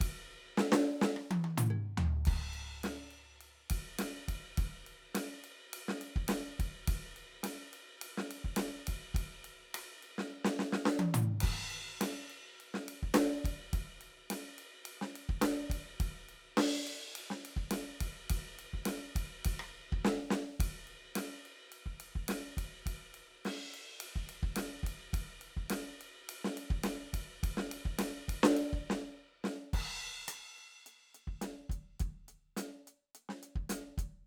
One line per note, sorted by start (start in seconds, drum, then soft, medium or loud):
0.01 kick medium
0.01 ride loud
0.58 snare loud
0.72 snare loud
1.02 snare loud
1.17 cross-stick medium
1.31 high tom loud
1.45 high tom medium
1.58 mid tom loud
1.71 percussion medium
1.98 floor tom loud
2.26 kick medium
2.26 ride medium
2.26 crash medium
2.54 ride soft
2.84 snare medium
2.84 ride medium
3.11 ride soft
3.41 ride medium
3.70 kick medium
3.70 ride loud
3.99 snare medium
3.99 ride loud
4.29 kick medium
4.29 ride medium
4.58 kick medium
4.58 ride loud
4.87 ride medium
5.15 snare medium
5.15 ride loud
5.44 ride medium
5.74 ride loud
5.89 snare medium
6.02 ride medium
6.16 kick medium
6.29 snare loud
6.29 ride loud
6.60 kick medium
6.60 ride medium
6.88 kick medium
6.88 ride loud
7.17 ride medium
7.44 snare medium
7.44 ride loud
7.74 ride medium
8.02 ride loud
8.18 snare medium
8.31 ride medium
8.45 kick medium
8.57 snare loud
8.57 ride loud
8.88 kick medium
8.88 ride loud
9.15 kick medium
9.15 ride loud
9.45 ride medium
9.75 cross-stick medium
9.75 ride loud
10.03 ride medium
10.19 snare medium
10.45 snare loud
10.60 snare medium
10.73 snare loud
10.86 snare medium
11.00 high tom loud
11.15 mid tom loud
11.41 kick medium
11.41 ride loud
11.41 crash loud
11.71 ride soft
12.01 snare loud
12.01 ride loud
12.30 ride soft
12.61 ride medium
12.75 snare medium
12.89 ride medium
13.03 kick medium
13.15 snare loud
13.15 ride loud
13.45 kick medium
13.45 ride medium
13.73 kick medium
13.73 ride medium
14.01 ride medium
14.31 snare medium
14.31 ride loud
14.59 ride medium
14.86 ride loud
15.02 snare medium
15.16 ride medium
15.29 kick medium
15.42 snare loud
15.42 ride loud
15.70 kick medium
15.70 ride loud
16.00 kick medium
16.00 ride loud
16.29 ride medium
16.58 snare loud
16.58 ride loud
16.87 ride medium
17.16 ride loud
17.31 snare medium
17.45 ride medium
17.57 kick medium
17.71 snare loud
17.71 ride loud
18.01 kick medium
18.01 ride loud
18.30 kick medium
18.30 ride loud
18.59 ride medium
18.74 kick soft
18.86 snare loud
18.86 ride loud
19.16 kick medium
19.16 ride loud
19.45 kick medium
19.45 ride loud
19.60 cross-stick medium
19.93 kick medium
19.97 kick soft
20.05 snare loud
20.31 snare loud
20.60 kick medium
20.60 ride loud
20.88 ride soft
21.16 snare medium
21.16 ride loud
21.46 ride soft
21.72 ride medium
21.86 kick soft
22.00 ride medium
22.16 kick medium
22.29 snare medium
22.29 ride loud
22.58 kick medium
22.58 ride medium
22.86 kick medium
22.86 ride loud
23.15 ride medium
23.45 snare medium
23.45 ride medium
23.74 ride medium
24.01 ride loud
24.16 kick medium
24.30 ride medium
24.43 kick medium
24.56 snare medium
24.56 ride loud
24.84 kick medium
24.84 ride medium
25.14 kick medium
25.14 ride loud
25.42 ride medium
25.57 kick medium
25.70 snare medium
25.70 ride loud
26.01 ride medium
26.30 ride loud
26.45 snare loud
26.58 ride medium
26.71 kick medium
26.84 snare loud
26.84 ride loud
27.14 kick medium
27.14 ride loud
27.43 kick medium
27.43 ride loud
27.58 snare loud
27.72 ride loud
27.86 kick medium
27.99 snare loud
27.99 ride loud
28.29 kick medium
28.29 ride loud
28.44 snare loud
28.57 ride medium
28.73 kick medium
28.90 snare loud
29.45 snare loud
29.74 kick medium
29.74 crash loud
30.28 cross-stick medium
30.28 closed hi-hat loud
30.59 closed hi-hat soft
30.87 closed hi-hat medium
31.15 closed hi-hat medium
31.28 kick soft
31.42 snare medium
31.42 closed hi-hat medium
31.70 kick medium
31.70 closed hi-hat medium
32.00 kick medium
32.00 closed hi-hat medium
32.29 closed hi-hat medium
32.57 closed hi-hat medium
32.57 snare medium
32.88 closed hi-hat medium
33.15 closed hi-hat medium
33.29 snare medium
33.43 closed hi-hat medium
33.56 kick medium
33.70 closed hi-hat loud
33.70 snare medium
33.98 kick medium
33.98 closed hi-hat medium